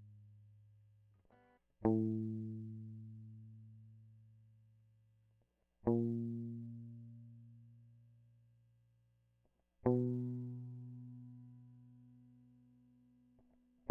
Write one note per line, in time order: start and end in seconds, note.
1.86 5.46 A2
5.88 9.19 A#2
9.87 13.42 B2